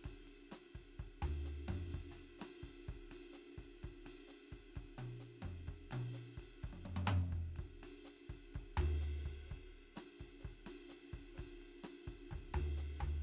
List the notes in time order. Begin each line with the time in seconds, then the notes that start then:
0.01 snare, hi-hat pedal, ride
0.06 kick
0.11 kick
0.27 ride
0.52 cross-stick, snare, hi-hat pedal, ride
0.75 kick, ride
0.81 kick
1.00 kick, ride
1.05 kick
1.22 floor tom, ride
1.45 hi-hat pedal
1.68 kick, mid tom, ride
1.76 kick
1.92 kick, ride
2.00 kick
2.11 snare
2.17 ride
2.39 cross-stick, snare, hi-hat pedal, ride
2.63 kick, ride
2.69 kick
2.89 kick, ride
2.95 kick
3.11 snare, ride
3.33 hi-hat pedal, ride
3.58 kick, ride
3.63 kick
3.83 kick, cross-stick, ride
3.90 kick
4.05 snare, ride
4.28 hi-hat pedal, ride
4.52 kick, ride
4.58 kick
4.76 kick, ride
4.83 kick
4.98 high tom, ride
5.20 hi-hat pedal, ride
5.42 kick, mid tom, ride
5.50 kick
5.68 kick, ride
5.74 kick
5.91 high tom, ride
6.14 hi-hat pedal, ride
6.38 kick, ride
6.43 kick
6.64 kick, ride
6.70 kick, mid tom
6.85 mid tom
6.97 mid tom
7.05 hi-hat pedal, mid tom
7.33 kick, ride
7.38 kick
7.53 hi-hat pedal, ride
7.59 kick
7.65 kick
7.83 snare, ride
8.05 hi-hat pedal, ride
8.30 kick, ride
8.35 kick
8.55 kick, ride
8.62 kick
8.77 floor tom, ride
9.01 hi-hat pedal
9.17 snare
9.26 kick
9.31 kick
9.47 hi-hat pedal
9.51 kick
9.57 kick
9.96 cross-stick, snare, hi-hat pedal, ride
10.20 kick, ride
10.26 kick
10.40 hi-hat pedal, ride
10.45 kick
10.51 kick
10.67 cross-stick, ride
10.89 hi-hat pedal, ride
11.13 kick, ride
11.19 kick
11.35 snare, hi-hat pedal, ride
11.39 kick
11.45 kick
11.62 ride
11.84 cross-stick, hi-hat pedal, ride
12.08 kick, ride
12.13 kick
12.31 kick, floor tom, ride
12.39 kick
12.54 floor tom, ride
12.78 hi-hat pedal, ride
13.00 kick, floor tom, ride
13.06 kick